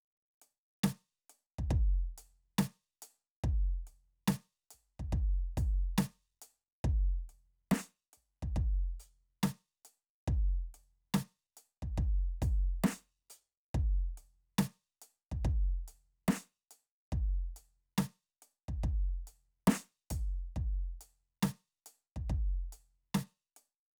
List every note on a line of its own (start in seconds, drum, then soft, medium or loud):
0.42 closed hi-hat soft
0.83 snare loud
1.29 closed hi-hat soft
1.58 kick medium
1.71 kick medium
2.18 closed hi-hat medium
2.58 snare loud
3.02 closed hi-hat medium
3.44 kick medium
3.44 crash soft
3.87 closed hi-hat soft
4.28 snare loud
4.71 kick soft
4.71 closed hi-hat medium
4.99 kick soft
5.12 kick medium
5.17 crash soft
5.57 kick medium
5.57 closed hi-hat medium
5.98 snare loud
6.42 closed hi-hat medium
6.84 kick medium
6.84 crash soft
7.29 closed hi-hat soft
7.71 snare loud
8.13 kick soft
8.13 closed hi-hat soft
8.42 kick medium
8.56 kick medium
8.61 ride soft
9.00 closed hi-hat medium
9.43 snare loud
9.85 closed hi-hat medium
10.28 kick medium
10.28 crash soft
10.74 closed hi-hat soft
11.14 snare loud
11.57 closed hi-hat medium
11.82 kick soft
11.98 kick medium
12.02 crash soft
12.02 ride soft
12.42 kick medium
12.42 closed hi-hat medium
12.84 snare loud
13.30 closed hi-hat medium
13.74 kick medium
13.74 crash soft
13.74 ride soft
14.17 closed hi-hat soft
14.58 snare loud
15.02 closed hi-hat medium
15.31 kick soft
15.45 kick medium
15.50 ride soft
15.88 closed hi-hat medium
16.28 snare loud
16.71 closed hi-hat medium
17.12 kick medium
17.16 crash soft
17.56 closed hi-hat medium
17.98 snare loud
18.42 closed hi-hat soft
18.68 kick soft
18.83 kick medium
18.83 crash soft
18.88 ride soft
19.27 closed hi-hat medium
19.67 snare loud
20.10 kick medium
20.10 closed hi-hat medium
20.56 kick medium
20.56 crash soft
21.01 closed hi-hat medium
21.43 snare loud
21.86 closed hi-hat medium
22.16 kick soft
22.29 kick medium
22.29 crash soft
22.72 closed hi-hat medium
23.14 snare loud
23.56 closed hi-hat soft